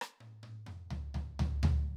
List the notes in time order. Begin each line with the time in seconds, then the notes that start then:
0.01 cross-stick
0.23 high tom
0.45 high tom
0.69 mid tom
0.93 floor tom
1.17 floor tom
1.42 floor tom
1.65 floor tom